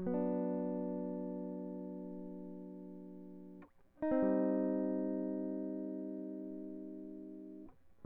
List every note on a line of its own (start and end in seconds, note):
0.00 3.62 F#3
0.07 2.94 B3
0.14 3.66 D4
4.03 7.68 D#4
4.12 7.60 C4
4.23 7.68 G3